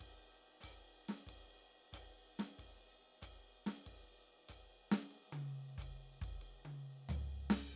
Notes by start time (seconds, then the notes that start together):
0.01 kick, ride
0.61 kick, hi-hat pedal, ride
1.09 snare, ride
1.27 kick, ride
1.93 kick, hi-hat pedal, ride
2.40 snare, ride
2.59 kick, ride
3.22 kick, hi-hat pedal, ride
3.67 snare, ride
3.87 kick, ride
4.49 kick, hi-hat pedal, ride
4.92 snare, ride
5.11 ride
5.33 high tom
5.78 kick, hi-hat pedal
5.83 ride
6.22 kick, ride
6.42 ride
6.66 high tom
7.09 floor tom, hi-hat pedal, ride
7.51 snare, crash